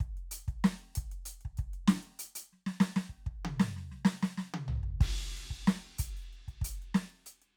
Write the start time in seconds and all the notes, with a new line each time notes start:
0.01 kick, closed hi-hat
0.18 closed hi-hat
0.32 closed hi-hat
0.49 kick, closed hi-hat
0.65 snare
0.79 closed hi-hat
0.96 kick, closed hi-hat
1.12 closed hi-hat
1.26 closed hi-hat
1.42 closed hi-hat
1.46 kick
1.58 kick, closed hi-hat
1.74 closed hi-hat
1.86 kick, snare
2.04 closed hi-hat
2.20 closed hi-hat
2.36 closed hi-hat
2.53 snare
2.67 snare
2.81 snare
2.97 snare
3.10 kick
3.27 kick
3.46 high tom
3.60 snare
3.77 snare
3.92 snare
4.06 snare
4.23 snare
4.38 snare
4.55 high tom
4.69 floor tom
4.84 kick
5.01 kick, ride
5.38 closed hi-hat
5.51 kick
5.55 closed hi-hat
5.68 snare
5.84 closed hi-hat
5.99 closed hi-hat, kick
6.18 open hi-hat
6.34 closed hi-hat
6.49 kick, open hi-hat
6.62 closed hi-hat, kick
6.83 closed hi-hat
6.95 snare
7.10 open hi-hat
7.27 closed hi-hat
7.43 closed hi-hat